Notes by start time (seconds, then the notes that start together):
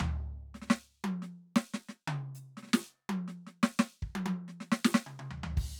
0.00 kick, floor tom
0.54 snare
0.62 snare
0.67 snare
0.70 snare
1.04 high tom
1.22 snare
1.56 snare
1.74 snare
1.89 snare
2.08 mid tom
2.35 hi-hat pedal
2.57 snare
2.63 snare
2.67 snare
2.73 snare
3.09 high tom
3.28 snare
3.47 snare
3.63 snare
3.79 snare
4.02 kick
4.15 high tom
4.26 high tom
4.48 snare
4.60 snare
4.72 snare
4.85 snare
4.94 snare
5.06 mid tom
5.19 mid tom
5.31 floor tom
5.43 floor tom
5.57 kick, crash